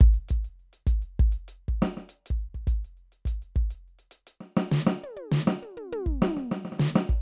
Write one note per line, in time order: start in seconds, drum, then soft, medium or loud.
0.01 kick loud
0.01 closed hi-hat soft
0.15 closed hi-hat medium
0.29 closed hi-hat loud
0.29 kick medium
0.45 closed hi-hat medium
0.60 closed hi-hat soft
0.74 closed hi-hat medium
0.88 closed hi-hat loud
0.88 kick medium
1.03 closed hi-hat medium
1.19 kick medium
1.19 closed hi-hat soft
1.33 closed hi-hat medium
1.49 closed hi-hat loud
1.69 kick medium
1.83 snare loud
1.98 snare soft
2.10 closed hi-hat loud
2.27 closed hi-hat loud
2.31 kick medium
2.40 closed hi-hat soft
2.55 kick soft
2.55 closed hi-hat soft
2.68 closed hi-hat loud
2.68 kick medium
2.85 closed hi-hat soft
2.98 closed hi-hat soft
3.13 closed hi-hat medium
3.26 closed hi-hat loud
3.26 kick medium
3.43 closed hi-hat soft
3.56 kick medium
3.56 closed hi-hat soft
3.71 closed hi-hat medium
3.89 closed hi-hat soft
4.00 closed hi-hat medium
4.12 closed hi-hat loud
4.28 closed hi-hat loud
4.42 snare soft
4.58 snare loud
4.73 snare loud
4.88 snare loud
5.04 high tom medium
5.17 high tom medium
5.33 snare loud
5.48 snare loud
5.63 mid tom medium
5.78 mid tom medium
5.93 mid tom loud
6.07 kick medium
6.23 snare loud
6.23 floor tom loud
6.38 snare soft
6.52 snare medium
6.66 snare medium
6.73 snare soft
6.80 snare soft
6.80 snare loud
6.96 snare loud
7.10 kick medium